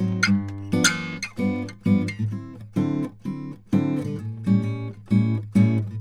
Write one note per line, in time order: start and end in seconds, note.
0.00 0.26 G#2
0.00 0.29 F#3
0.00 0.29 C4
0.00 0.28 D#4
0.26 0.86 G2
0.74 0.86 F3
0.74 0.86 B3
0.74 0.86 D4
0.86 1.21 G2
0.86 1.21 E3
0.86 1.21 A#3
0.86 1.27 C#4
1.39 1.68 G2
1.39 1.69 F3
1.39 1.71 B3
1.39 1.77 D4
1.87 2.13 G2
1.87 2.09 F3
1.87 2.09 B3
1.87 2.13 D4
2.10 2.30 D3
2.21 2.28 A#2
2.29 2.61 D3
2.33 2.43 F#3
2.33 2.59 C4
2.33 2.60 E4
2.78 3.13 D3
2.78 3.12 F#3
2.78 3.15 C4
2.78 3.15 E4
3.27 3.60 D3
3.27 3.58 F#3
3.27 3.56 C4
3.27 3.60 E4
3.74 4.01 D3
3.74 3.99 F#3
3.74 4.06 C4
3.74 4.07 E4
4.01 4.22 A2
4.07 4.19 E2
4.07 4.23 D3
4.21 4.47 A2
4.48 4.64 A2
4.48 4.95 G3
4.48 4.64 C#4
4.48 4.57 E4
4.63 4.95 A2
4.63 4.94 C#4
4.63 4.88 E4
5.12 5.45 A2
5.12 5.43 G3
5.12 5.43 C#4
5.12 5.46 E4
5.57 5.83 A2
5.57 5.85 G3
5.57 5.84 C#4
5.57 5.87 E4